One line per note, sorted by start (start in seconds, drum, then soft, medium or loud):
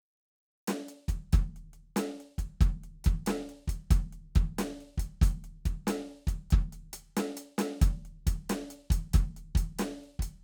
0.68 snare loud
0.68 closed hi-hat loud
0.88 closed hi-hat medium
1.08 kick medium
1.08 closed hi-hat medium
1.33 kick loud
1.33 closed hi-hat medium
1.56 closed hi-hat soft
1.73 closed hi-hat soft
1.96 snare loud
1.96 closed hi-hat loud
2.20 closed hi-hat soft
2.38 kick medium
2.38 closed hi-hat medium
2.61 kick loud
2.61 closed hi-hat medium
2.84 closed hi-hat soft
3.04 kick loud
3.04 closed hi-hat loud
3.26 snare loud
3.26 closed hi-hat loud
3.49 closed hi-hat soft
3.68 kick medium
3.68 closed hi-hat medium
3.90 kick loud
3.90 closed hi-hat loud
4.13 closed hi-hat soft
4.35 kick loud
4.35 closed hi-hat medium
4.58 snare loud
4.58 closed hi-hat loud
4.81 closed hi-hat soft
4.98 kick medium
4.98 closed hi-hat medium
5.21 closed hi-hat medium
5.21 kick loud
5.44 closed hi-hat soft
5.65 kick medium
5.65 closed hi-hat medium
5.87 snare loud
5.87 closed hi-hat loud
6.27 kick medium
6.27 closed hi-hat medium
6.50 kick loud
6.50 closed hi-hat medium
6.72 closed hi-hat medium
6.93 closed hi-hat loud
7.17 snare loud
7.17 closed hi-hat loud
7.37 closed hi-hat loud
7.58 snare loud
7.58 closed hi-hat loud
7.81 kick loud
7.81 closed hi-hat loud
8.05 closed hi-hat soft
8.27 kick loud
8.27 closed hi-hat loud
8.49 snare loud
8.49 closed hi-hat loud
8.70 closed hi-hat medium
8.90 kick loud
8.90 closed hi-hat loud
9.13 kick loud
9.13 closed hi-hat loud
9.36 closed hi-hat medium
9.55 kick loud
9.55 closed hi-hat loud
9.79 snare loud
9.79 closed hi-hat loud
10.04 closed hi-hat soft
10.19 kick medium
10.19 closed hi-hat loud